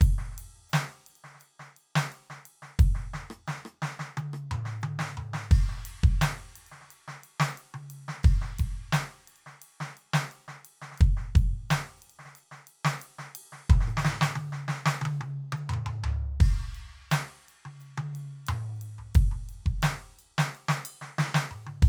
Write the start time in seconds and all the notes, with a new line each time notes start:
0.01 kick, ride
0.07 hi-hat pedal
0.18 snare
0.32 snare
0.38 ride
0.69 hi-hat pedal, ride
0.73 snare
1.07 ride
1.15 ride
1.24 snare
1.35 snare
1.40 hi-hat pedal, ride
1.60 snare
1.77 ride
1.95 snare
2.01 hi-hat pedal
2.12 ride
2.30 snare
2.45 ride
2.62 snare
2.79 kick, ride
2.95 snare
3.14 snare
3.30 cross-stick
3.47 snare, hi-hat pedal
3.65 cross-stick
3.82 snare
3.99 snare
4.17 hi-hat pedal, high tom
4.33 cross-stick
4.51 mid tom
4.65 snare
4.81 hi-hat pedal, high tom
4.99 snare
5.17 mid tom
5.34 snare
5.51 kick, crash
5.69 snare
5.77 snare
5.85 ride
6.03 kick
6.21 snare, ride
6.56 ride
6.67 ride
6.72 snare
6.81 snare
6.90 hi-hat pedal, ride
7.08 snare
7.24 ride
7.40 snare
7.50 hi-hat pedal
7.58 ride
7.74 high tom
7.90 ride
8.08 snare
8.23 kick, crash
8.42 snare
8.59 kick, ride
8.92 snare, hi-hat pedal, ride
9.28 ride
9.36 ride
9.46 snare
9.62 ride
9.71 hi-hat pedal
9.80 snare
9.97 ride
10.13 snare
10.31 ride
10.48 snare
10.65 ride
10.82 snare
10.98 kick, ride
11.17 snare
11.35 kick, ride
11.69 snare, hi-hat pedal, ride
11.97 hi-hat pedal
12.02 ride
12.10 ride
12.19 snare
12.25 snare
12.35 hi-hat pedal, ride
12.51 snare
12.67 ride
12.85 snare
12.99 hi-hat pedal, ride
13.19 snare
13.35 ride
13.52 snare
13.70 kick, mid tom
13.81 snare
13.87 cross-stick
13.97 snare
14.05 snare
14.21 snare
14.36 high tom
14.52 snare
14.68 snare
14.86 snare
15.01 high tom
15.05 high tom
15.21 high tom
15.52 hi-hat pedal, high tom
15.69 mid tom
15.74 mid tom
15.86 mid tom
16.04 floor tom
16.40 kick, crash
16.75 ride
17.10 snare, hi-hat pedal, ride
17.48 ride
17.65 high tom
17.80 hi-hat pedal, ride
17.98 high tom
18.15 ride
18.46 hi-hat pedal, mid tom, ride
18.75 hi-hat pedal
18.81 ride
18.98 floor tom
19.15 kick, ride
19.31 floor tom
19.49 ride
19.66 kick
19.82 snare, ride
20.19 ride bell
20.38 snare
20.43 hi-hat pedal
20.55 ride
20.68 snare
20.85 ride bell
21.01 snare
21.18 snare, hi-hat pedal
21.34 snare
21.51 mid tom
21.67 high tom
21.82 kick, crash